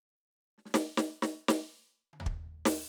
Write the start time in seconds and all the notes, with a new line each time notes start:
0.58 snare
0.65 snare
0.69 snare
0.74 snare
0.97 snare
1.22 snare
1.48 snare
2.13 high tom
2.20 floor tom
2.26 kick
2.65 open hi-hat, snare